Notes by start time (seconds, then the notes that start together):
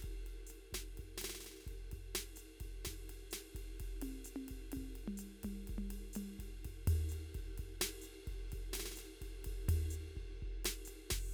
0.01 kick, snare, ride
0.06 kick, snare
0.11 snare
0.26 ride
0.47 hi-hat pedal, ride
0.73 kick, snare, ride
0.98 kick, ride
1.04 kick
1.18 snare, ride
1.24 snare
1.30 snare
1.35 snare
1.41 snare, hi-hat pedal
1.45 snare, ride
1.52 snare
1.56 snare
1.61 snare
1.64 kick, snare
1.68 snare, ride
1.72 kick, snare
1.77 snare
1.92 kick, ride
1.98 kick
2.15 snare, ride
2.36 hi-hat pedal, ride
2.60 kick, ride
2.66 kick
2.85 kick, snare, ride
2.92 kick
3.10 ride
3.31 snare, hi-hat pedal, ride
3.55 kick, ride
3.60 kick
3.80 kick, ride
3.86 kick
4.02 high tom, ride
4.25 hi-hat pedal, ride
4.36 high tom
4.48 kick, ride
4.72 high tom, ride
4.77 kick
4.82 kick
4.96 ride
5.08 mid tom
5.18 hi-hat pedal, ride
5.44 kick, mid tom, ride
5.68 kick, ride
5.75 kick, mid tom
5.91 ride
6.13 hi-hat pedal, mid tom, ride
6.39 kick, ride
6.65 kick, ride
6.71 kick
6.88 floor tom, ride
7.09 hi-hat pedal, ride
7.35 kick, ride
7.41 kick
7.58 kick, ride
7.65 kick
7.81 snare, ride
8.02 snare, hi-hat pedal, ride
8.27 kick, ride
8.33 kick
8.50 kick, hi-hat pedal, ride
8.59 kick
8.73 snare, ride
8.80 snare
8.86 snare
8.92 snare
8.96 snare, hi-hat pedal, ride
9.05 snare
9.11 snare
9.16 snare
9.21 kick, snare, ride
9.26 snare
9.34 snare
9.37 snare
9.45 kick, ride
9.52 kick
9.69 floor tom, ride
9.91 hi-hat pedal
10.17 kick
10.22 kick
10.43 kick
10.48 kick
10.65 snare, ride
10.85 hi-hat pedal, ride
11.11 kick, snare, crash
11.18 kick